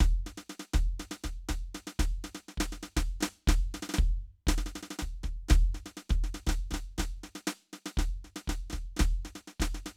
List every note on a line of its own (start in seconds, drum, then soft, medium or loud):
0.01 kick loud
0.01 snare medium
0.27 snare soft
0.38 snare soft
0.50 snare soft
0.74 kick medium
0.74 snare medium
1.00 snare soft
1.12 snare medium
1.24 kick soft
1.24 snare medium
1.49 kick medium
1.49 snare medium
1.75 snare soft
1.88 snare soft
2.00 kick medium
2.00 snare medium
2.25 snare soft
2.35 snare soft
2.49 snare soft
2.58 kick soft
2.58 snare medium
2.73 snare soft
2.83 snare soft
2.97 kick medium
2.97 snare medium
3.21 snare soft
3.23 snare loud
3.48 kick medium
3.48 snare medium
3.75 snare medium
3.83 snare medium
3.90 snare medium
3.94 snare medium
3.99 kick medium
4.48 kick medium
4.48 snare loud
4.58 snare soft
4.67 snare soft
4.76 snare soft
4.83 snare soft
4.91 snare soft
4.99 kick soft
4.99 snare medium
5.24 kick soft
5.24 snare soft
5.49 kick loud
5.49 snare soft
5.49 snare medium
5.75 snare soft
5.86 snare soft
5.97 snare soft
6.10 kick medium
6.10 snare soft
6.24 snare soft
6.35 snare soft
6.47 kick medium
6.47 snare soft
6.49 snare medium
6.71 kick soft
6.71 snare soft
6.74 snare medium
6.99 kick medium
6.99 snare medium
7.24 snare soft
7.36 snare soft
7.48 snare medium
7.74 snare soft
7.86 snare medium
7.98 kick medium
7.98 snare medium
8.25 snare soft
8.37 snare medium
8.48 kick medium
8.48 snare medium
8.71 snare soft
8.73 kick soft
8.73 snare soft
8.97 snare soft
9.00 kick medium
9.00 snare medium
9.26 snare soft
9.36 snare soft
9.48 snare soft
9.60 kick medium
9.60 snare soft
9.60 snare medium
9.75 snare soft
9.87 snare medium